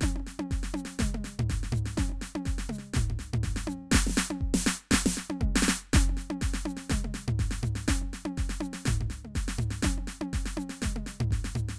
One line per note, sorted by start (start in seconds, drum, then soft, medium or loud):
0.01 kick medium
0.01 snare medium
0.01 hi-hat pedal medium
0.01 high tom loud
0.16 high tom medium
0.20 high tom soft
0.27 snare soft
0.27 hi-hat pedal medium
0.39 high tom loud
0.51 kick medium
0.51 snare soft
0.51 hi-hat pedal soft
0.63 snare medium
0.74 hi-hat pedal medium
0.74 high tom loud
0.85 snare medium
0.99 kick medium
0.99 snare medium
0.99 hi-hat pedal medium
0.99 mid tom loud
1.14 mid tom loud
1.24 snare soft
1.24 hi-hat pedal medium
1.39 floor tom loud
1.50 kick medium
1.50 snare medium
1.50 hi-hat pedal medium
1.63 snare soft
1.72 floor tom loud
1.72 hi-hat pedal medium
1.86 snare soft
1.98 kick medium
1.98 snare medium
1.98 hi-hat pedal medium
1.98 high tom loud
2.09 high tom soft
2.12 high tom soft
2.22 snare medium
2.22 hi-hat pedal medium
2.35 high tom loud
2.46 kick medium
2.46 snare soft
2.46 hi-hat pedal medium
2.58 snare medium
2.69 hi-hat pedal medium
2.69 mid tom loud
2.79 snare soft
2.94 kick medium
2.94 snare medium
2.94 floor tom loud
2.94 hi-hat pedal medium
3.10 floor tom medium
3.19 snare soft
3.19 hi-hat pedal medium
3.34 floor tom loud
3.43 kick medium
3.43 snare medium
3.43 hi-hat pedal medium
3.56 snare medium
3.67 hi-hat pedal loud
3.67 high tom loud
3.92 kick medium
3.92 snare loud
3.92 hi-hat pedal medium
3.95 snare loud
4.07 snare medium
4.10 snare medium
4.17 kick soft
4.17 snare loud
4.17 hi-hat pedal medium
4.31 high tom loud
4.41 kick medium
4.54 snare loud
4.66 snare loud
4.66 hi-hat pedal medium
4.91 kick soft
4.91 snare loud
4.94 snare loud
5.06 snare loud
5.14 kick soft
5.14 snare medium
5.14 hi-hat pedal medium
5.30 high tom loud
5.41 kick medium
5.41 mid tom loud
5.56 snare loud
5.62 snare loud
5.67 kick soft
5.67 snare loud
5.67 hi-hat pedal medium
5.93 kick medium
5.93 snare loud
5.93 hi-hat pedal soft
5.93 high tom loud
6.09 high tom medium
6.17 snare soft
6.17 hi-hat pedal medium
6.30 high tom loud
6.41 kick medium
6.41 snare medium
6.41 hi-hat pedal soft
6.54 snare medium
6.66 hi-hat pedal medium
6.66 high tom loud
6.77 snare soft
6.90 kick medium
6.90 snare medium
6.90 hi-hat pedal soft
6.90 mid tom loud
7.04 mid tom medium
7.14 snare medium
7.14 hi-hat pedal medium
7.28 floor tom loud
7.39 kick medium
7.39 snare medium
7.39 hi-hat pedal medium
7.51 snare medium
7.63 floor tom loud
7.63 hi-hat pedal medium
7.76 snare medium
7.88 kick medium
7.88 snare loud
7.88 hi-hat pedal medium
7.88 high tom loud
8.02 high tom soft
8.13 snare soft
8.13 hi-hat pedal medium
8.25 high tom loud
8.37 kick medium
8.37 snare medium
8.37 hi-hat pedal medium
8.49 snare medium
8.61 hi-hat pedal medium
8.61 high tom loud
8.73 snare medium
8.86 kick medium
8.86 snare medium
8.86 floor tom loud
8.86 hi-hat pedal medium
9.01 floor tom medium
9.10 snare soft
9.10 hi-hat pedal medium
9.25 mid tom medium
9.35 kick medium
9.35 snare medium
9.35 hi-hat pedal medium
9.48 snare medium
9.59 floor tom loud
9.59 hi-hat pedal medium
9.71 snare medium
9.83 kick medium
9.83 snare loud
9.83 hi-hat pedal medium
9.83 high tom loud
9.98 high tom medium
10.07 snare medium
10.07 hi-hat pedal medium
10.21 high tom loud
10.33 kick medium
10.33 snare medium
10.33 hi-hat pedal medium
10.46 snare medium
10.57 hi-hat pedal medium
10.57 high tom loud
10.70 snare medium
10.82 kick medium
10.82 snare medium
10.82 hi-hat pedal medium
10.82 mid tom medium
10.96 mid tom loud
11.06 snare medium
11.06 hi-hat pedal medium
11.20 floor tom loud
11.31 kick medium
11.31 snare soft
11.31 hi-hat pedal medium
11.44 snare medium
11.55 floor tom loud
11.55 hi-hat pedal medium
11.69 snare soft